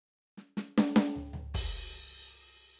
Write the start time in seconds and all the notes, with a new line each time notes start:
0.38 snare
0.57 snare
0.78 snare
0.96 snare
1.16 floor tom
1.33 floor tom
1.54 kick, crash